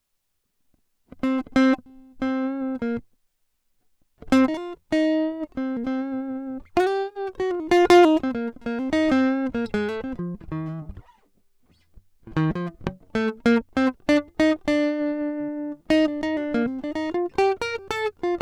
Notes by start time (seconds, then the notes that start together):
1.24 C4
1.57 C4
1.75 B3
2.23 C4
2.83 A#3
4.33 C4
4.49 D#4
4.59 F4
4.93 D#4
5.58 C4
5.78 A#3
5.88 C4
6.78 F#4
6.87 G4
7.41 F#4
7.52 E4
7.72 F4
7.82 F#4
7.91 F4
8.05 D#4
8.25 C4
8.36 A#3
8.67 A#3
8.80 C4
8.94 D#4
9.13 C4
9.56 A#3
9.75 G#3
9.90 A3
10.06 C4
10.21 F3
10.53 D#3
12.37 D#3
12.56 F3
13.16 A3
13.46 A#3
13.77 C4
14.10 D4
14.40 D#4
14.69 D4
15.91 D#4
16.06 D4
16.24 D#4
16.38 D4
16.55 A#3
16.67 C4
16.85 D4
16.96 D#4
17.16 F4
17.39 G4
17.62 A#4
17.76 G4
17.91 A4
18.24 F4